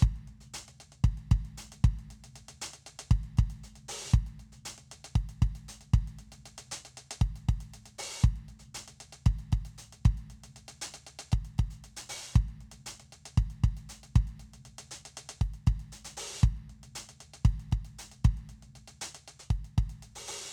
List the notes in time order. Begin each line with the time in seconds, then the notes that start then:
0.01 kick, closed hi-hat, hi-hat pedal
0.16 closed hi-hat
0.28 closed hi-hat
0.41 closed hi-hat
0.54 closed hi-hat
0.69 closed hi-hat
0.81 closed hi-hat
0.93 closed hi-hat
1.05 kick, closed hi-hat
1.18 closed hi-hat
1.32 kick, closed hi-hat
1.46 closed hi-hat
1.58 closed hi-hat
1.73 closed hi-hat
1.85 kick, closed hi-hat
1.99 closed hi-hat
2.11 closed hi-hat
2.24 closed hi-hat
2.36 closed hi-hat
2.49 closed hi-hat
2.62 closed hi-hat
2.74 closed hi-hat
2.87 closed hi-hat
3.00 closed hi-hat
3.12 kick, closed hi-hat
3.24 closed hi-hat
3.38 kick, closed hi-hat
3.51 closed hi-hat
3.64 closed hi-hat
3.76 closed hi-hat
3.89 open hi-hat
4.03 open hi-hat
4.12 kick, closed hi-hat, hi-hat pedal
4.27 closed hi-hat
4.40 closed hi-hat
4.53 closed hi-hat
4.66 closed hi-hat
4.78 closed hi-hat
4.92 closed hi-hat
5.05 closed hi-hat
5.16 kick, closed hi-hat
5.29 closed hi-hat
5.43 kick, closed hi-hat
5.56 closed hi-hat
5.69 closed hi-hat
5.81 closed hi-hat
5.94 kick, closed hi-hat
6.08 closed hi-hat
6.19 closed hi-hat
6.33 closed hi-hat
6.46 closed hi-hat
6.59 closed hi-hat
6.72 closed hi-hat
6.86 closed hi-hat
6.98 closed hi-hat
7.11 closed hi-hat
7.22 kick, closed hi-hat
7.36 closed hi-hat
7.49 kick, closed hi-hat
7.61 closed hi-hat
7.74 closed hi-hat
7.86 closed hi-hat
7.99 open hi-hat
8.13 open hi-hat
8.22 kick, hi-hat pedal
8.26 closed hi-hat
8.49 closed hi-hat
8.60 closed hi-hat
8.75 closed hi-hat
8.88 closed hi-hat
9.01 closed hi-hat
9.13 closed hi-hat
9.26 kick, closed hi-hat
9.39 closed hi-hat
9.53 kick, closed hi-hat
9.66 closed hi-hat
9.79 closed hi-hat
9.93 closed hi-hat
10.06 kick, closed hi-hat
10.18 closed hi-hat
10.31 closed hi-hat
10.44 closed hi-hat
10.57 closed hi-hat
10.69 closed hi-hat
10.82 closed hi-hat
10.95 closed hi-hat
11.07 closed hi-hat
11.20 closed hi-hat
11.32 kick, closed hi-hat
11.45 closed hi-hat
11.59 kick, closed hi-hat
11.71 closed hi-hat
11.85 closed hi-hat
11.97 closed hi-hat
12.10 open hi-hat
12.24 open hi-hat
12.34 kick, closed hi-hat, hi-hat pedal
12.49 closed hi-hat
12.61 closed hi-hat
12.72 closed hi-hat
12.87 closed hi-hat
13.00 closed hi-hat
13.13 closed hi-hat
13.26 closed hi-hat
13.38 kick, closed hi-hat
13.51 closed hi-hat
13.64 kick, closed hi-hat
13.77 closed hi-hat
13.90 closed hi-hat
14.04 closed hi-hat
14.16 kick, closed hi-hat
14.28 closed hi-hat
14.40 closed hi-hat
14.54 closed hi-hat
14.66 closed hi-hat
14.79 closed hi-hat
14.92 closed hi-hat
15.06 closed hi-hat
15.18 closed hi-hat
15.30 closed hi-hat
15.42 kick, closed hi-hat
15.54 closed hi-hat
15.67 kick, closed hi-hat
15.80 closed hi-hat
15.93 closed hi-hat
16.05 closed hi-hat
16.18 open hi-hat
16.36 open hi-hat
16.43 kick, closed hi-hat, hi-hat pedal
16.57 closed hi-hat
16.70 closed hi-hat
16.84 closed hi-hat
16.96 closed hi-hat
17.10 closed hi-hat
17.21 closed hi-hat
17.34 closed hi-hat
17.46 kick, closed hi-hat
17.60 closed hi-hat
17.72 kick, closed hi-hat
17.85 closed hi-hat
17.99 closed hi-hat
18.12 closed hi-hat
18.25 kick, closed hi-hat
18.38 closed hi-hat
18.50 closed hi-hat
18.63 closed hi-hat
18.76 closed hi-hat
18.88 closed hi-hat
19.02 closed hi-hat
19.15 closed hi-hat
19.28 closed hi-hat
19.40 closed hi-hat
19.51 kick, closed hi-hat
19.65 closed hi-hat
19.78 kick, closed hi-hat
19.90 closed hi-hat
20.03 closed hi-hat
20.16 open hi-hat
20.28 open hi-hat
20.45 open hi-hat